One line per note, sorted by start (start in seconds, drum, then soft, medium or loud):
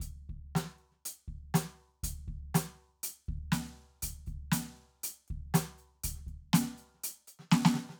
0.03 closed hi-hat medium
0.03 kick soft
0.03 snare soft
0.30 kick soft
0.30 closed hi-hat soft
0.56 closed hi-hat medium
0.56 snare loud
0.61 snare soft
0.79 closed hi-hat soft
0.92 snare soft
1.06 closed hi-hat loud
1.28 kick soft
1.28 closed hi-hat soft
1.35 kick soft
1.55 closed hi-hat loud
1.55 snare loud
1.60 snare soft
2.04 closed hi-hat loud
2.04 kick medium
2.28 kick medium
2.28 closed hi-hat soft
2.55 closed hi-hat loud
2.55 snare loud
3.04 closed hi-hat loud
3.26 kick medium
3.26 closed hi-hat soft
3.52 closed hi-hat medium
3.52 snare loud
4.03 closed hi-hat loud
4.03 kick soft
4.27 closed hi-hat soft
4.27 kick medium
4.52 closed hi-hat loud
4.52 snare loud
4.77 closed hi-hat soft
5.04 closed hi-hat loud
5.28 kick medium
5.28 closed hi-hat soft
5.55 closed hi-hat loud
5.55 snare loud
5.61 snare soft
5.79 closed hi-hat soft
5.94 snare soft
6.04 closed hi-hat loud
6.04 kick medium
6.16 snare soft
6.27 kick soft
6.27 closed hi-hat soft
6.54 closed hi-hat loud
6.54 snare loud
6.60 snare soft
6.78 closed hi-hat soft
6.94 snare soft
7.04 closed hi-hat loud
7.28 closed hi-hat medium
7.40 snare soft
7.51 snare loud
7.51 hi-hat pedal soft
7.66 snare loud
7.74 snare medium
7.90 snare soft